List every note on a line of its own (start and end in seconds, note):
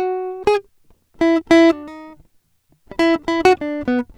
0.01 0.46 F#4
0.48 0.64 G#4
1.22 1.44 E4
1.52 1.71 E4
1.71 1.86 D4
1.89 2.18 D#4
3.00 3.19 E4
3.29 3.41 E4
3.41 3.57 D4
3.46 3.58 F#4
3.62 3.86 D4
3.89 4.07 B3